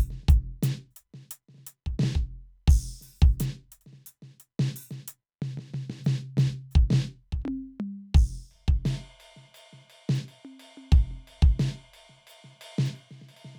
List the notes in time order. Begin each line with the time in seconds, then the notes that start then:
0.01 hi-hat pedal
0.11 snare
0.24 snare
0.29 closed hi-hat, kick
0.63 closed hi-hat, snare
0.91 hi-hat pedal
0.97 closed hi-hat
1.15 snare
1.32 closed hi-hat
1.49 snare
1.55 snare
1.59 snare
1.67 closed hi-hat
1.87 kick
2.00 snare
2.04 snare
2.16 kick
2.68 open hi-hat, kick, crash
3.02 open hi-hat, snare
3.23 kick
3.34 hi-hat pedal
3.41 closed hi-hat, snare
3.73 closed hi-hat
3.82 closed hi-hat
3.87 snare
3.94 snare
4.07 open hi-hat, hi-hat pedal
4.23 snare
4.41 closed hi-hat
4.60 snare
4.77 open hi-hat
4.85 hi-hat pedal
4.92 snare
5.09 closed hi-hat
5.43 snare, floor tom
5.58 snare, floor tom
5.75 snare, floor tom
5.90 snare, floor tom
6.05 snare, floor tom, hi-hat pedal
6.38 snare, floor tom, hi-hat pedal
6.46 kick
6.72 hi-hat pedal
6.76 kick
6.91 kick, snare
6.94 snare
7.33 kick
7.42 kick, high tom
7.49 high tom
7.81 mid tom
8.15 kick, crash
8.52 ride bell
8.69 kick
8.86 snare, ride
9.21 ride
9.37 snare
9.55 hi-hat pedal, ride
9.74 snare
9.90 ride
10.10 snare
10.15 hi-hat pedal
10.29 ride
10.46 high tom
10.60 ride
10.78 high tom
10.93 kick, ride bell
11.12 high tom
11.28 ride
11.43 kick
11.60 snare, ride bell
11.94 ride
12.10 snare
12.28 hi-hat pedal, ride bell
12.45 snare
12.62 ride
12.79 snare
12.86 hi-hat pedal
12.96 ride bell
13.12 snare
13.22 snare
13.29 ride bell
13.37 ride
13.45 snare
13.56 snare